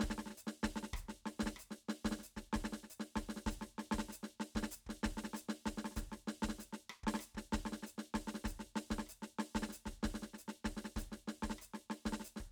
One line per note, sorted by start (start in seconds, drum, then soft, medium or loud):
0.01 kick soft
0.01 snare medium
0.19 snare soft
0.27 snare soft
0.30 snare soft
0.38 hi-hat pedal medium
0.48 snare soft
0.64 kick soft
0.64 snare medium
0.77 snare soft
0.84 snare soft
0.94 kick soft
0.94 cross-stick medium
0.94 hi-hat pedal soft
1.09 snare soft
1.26 snare soft
1.40 kick soft
1.40 snare medium
1.47 snare medium
1.57 cross-stick soft
1.57 hi-hat pedal medium
1.71 snare soft
1.89 snare medium
2.05 kick soft
2.05 snare medium
2.12 snare medium
2.20 snare soft
2.24 hi-hat pedal medium
2.37 kick soft
2.37 snare soft
2.54 kick soft
2.54 snare medium
2.65 snare soft
2.73 snare soft
2.84 snare soft
2.91 hi-hat pedal medium
3.00 snare soft
3.16 kick soft
3.16 snare medium
3.30 snare soft
3.37 snare soft
3.47 kick soft
3.51 hi-hat pedal soft
3.62 snare soft
3.79 snare soft
3.92 kick soft
3.92 snare medium
3.99 snare medium
4.09 snare soft
4.09 hi-hat pedal medium
4.24 snare soft
4.41 snare soft
4.56 kick soft
4.56 snare medium
4.64 snare soft
4.72 cross-stick soft
4.72 hi-hat pedal medium
4.87 kick soft
4.87 snare soft
5.04 kick soft
5.04 snare medium
5.18 snare soft
5.25 snare soft
5.34 snare soft
5.34 hi-hat pedal medium
5.49 snare medium
5.66 kick soft
5.66 snare medium
5.78 snare soft
5.85 snare soft
5.92 snare soft
5.97 kick soft
5.97 snare soft
5.97 hi-hat pedal medium
6.12 snare soft
6.28 snare medium
6.43 kick soft
6.43 snare medium
6.49 snare soft
6.59 snare soft
6.59 hi-hat pedal medium
6.73 snare soft
6.90 cross-stick medium
7.04 kick soft
7.04 snare medium
7.15 snare medium
7.20 cross-stick soft
7.20 hi-hat pedal medium
7.35 kick soft
7.35 snare soft
7.53 kick soft
7.53 snare medium
7.66 snare soft
7.73 snare soft
7.83 snare soft
7.83 hi-hat pedal medium
7.99 snare soft
8.15 kick soft
8.15 snare medium
8.28 snare soft
8.35 snare soft
8.46 kick soft
8.46 hi-hat pedal medium
8.60 snare soft
8.76 snare medium
8.91 kick soft
8.91 snare medium
8.99 snare soft
9.07 cross-stick soft
9.07 hi-hat pedal medium
9.23 snare soft
9.39 snare medium
9.56 kick soft
9.56 snare medium
9.63 snare soft
9.70 snare soft
9.70 hi-hat pedal medium
9.86 kick soft
9.86 snare soft
10.04 kick soft
10.04 snare medium
10.15 snare soft
10.23 snare soft
10.34 snare soft
10.39 hi-hat pedal soft
10.49 snare soft
10.65 kick soft
10.65 snare medium
10.77 snare soft
10.85 snare soft
10.97 kick soft
10.97 snare soft
10.97 hi-hat pedal medium
11.12 snare soft
11.28 snare soft
11.43 kick soft
11.43 snare soft
11.51 snare soft
11.59 cross-stick soft
11.59 hi-hat pedal medium
11.74 snare soft
11.91 snare soft
12.06 kick soft
12.06 snare medium
12.13 snare soft
12.21 snare soft
12.25 hi-hat pedal medium
12.37 kick soft
12.37 snare soft